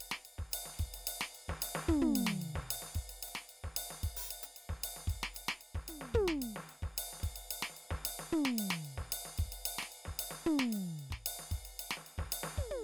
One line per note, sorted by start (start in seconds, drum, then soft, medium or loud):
0.01 ride medium
0.12 snare loud
0.25 ride soft
0.39 kick soft
0.39 snare soft
0.51 hi-hat pedal medium
0.51 ride bell loud
0.66 snare soft
0.74 snare soft
0.79 kick soft
0.79 ride medium
0.86 kick soft
0.94 snare soft
0.94 ride medium
0.97 snare soft
1.07 hi-hat pedal medium
1.07 ride bell loud
1.21 snare loud
1.35 ride soft
1.49 kick soft
1.49 snare soft
1.61 hi-hat pedal medium
1.61 ride bell loud
1.75 snare medium
1.88 kick soft
1.88 floor tom loud
1.95 kick soft
2.01 floor tom loud
2.16 hi-hat pedal medium
2.16 ride bell loud
2.27 snare loud
2.42 ride medium
2.56 kick soft
2.56 snare soft
2.71 hi-hat pedal medium
2.71 ride bell loud
2.83 snare soft
2.88 snare soft
2.95 kick soft
2.95 ride medium
3.10 ride medium
3.23 ride bell medium
3.27 hi-hat pedal medium
3.35 snare medium
3.42 snare soft
3.49 ride soft
3.64 kick soft
3.64 snare soft
3.77 hi-hat pedal medium
3.77 ride bell loud
3.91 snare soft
4.04 kick soft
4.04 ride medium
4.17 open hi-hat loud
4.25 hi-hat pedal soft
4.31 ride medium
4.43 open hi-hat loud
4.57 ride medium
4.70 kick soft
4.70 snare soft
4.83 hi-hat pedal medium
4.83 ride loud
4.97 snare soft
5.08 kick medium
5.08 ride soft
5.14 kick soft
5.23 snare loud
5.34 hi-hat pedal medium
5.34 ride medium
5.49 snare loud
5.61 ride soft
5.75 kick soft
5.75 snare soft
5.88 hi-hat pedal medium
5.88 ride medium
5.88 floor tom soft
6.02 snare soft
6.15 kick medium
6.15 mid tom loud
6.21 kick soft
6.25 kick soft
6.25 snare loud
6.42 hi-hat pedal medium
6.42 ride bell medium
6.56 snare soft
6.69 ride soft
6.83 kick soft
6.83 snare soft
6.97 hi-hat pedal medium
6.97 ride bell loud
7.13 snare soft
7.20 kick soft
7.20 snare soft
7.20 ride medium
7.36 ride medium
7.51 hi-hat pedal medium
7.51 ride bell loud
7.63 snare medium
7.70 snare soft
7.77 ride soft
7.91 kick soft
7.91 snare soft
8.05 hi-hat pedal medium
8.05 ride bell loud
8.20 snare soft
8.32 floor tom loud
8.45 snare loud
8.59 hi-hat pedal medium
8.59 ride bell loud
8.71 snare loud
8.85 ride soft
8.98 kick soft
8.98 snare soft
9.12 hi-hat pedal medium
9.12 ride bell loud
9.26 snare soft
9.38 kick soft
9.38 ride medium
9.46 kick soft
9.52 ride medium
9.66 hi-hat pedal medium
9.66 ride bell loud
9.79 snare medium
9.83 snare soft
9.92 ride soft
10.06 kick soft
10.06 snare soft
10.19 hi-hat pedal medium
10.19 ride bell loud
10.31 snare soft
10.46 floor tom loud
10.60 snare loud
10.73 hi-hat pedal medium
10.73 ride medium
10.99 ride soft
11.11 kick soft
11.11 snare soft
11.26 hi-hat pedal medium
11.26 ride bell loud
11.40 snare soft
11.52 kick soft
11.52 ride medium
11.57 kick soft
11.66 ride medium
11.80 hi-hat pedal medium
11.80 ride medium
11.91 snare medium
11.97 snare soft
12.07 ride soft
12.18 kick soft
12.18 snare soft
12.24 kick soft
12.32 hi-hat pedal medium
12.32 ride bell loud
12.44 snare medium
12.58 kick soft
12.58 high tom medium
12.71 high tom medium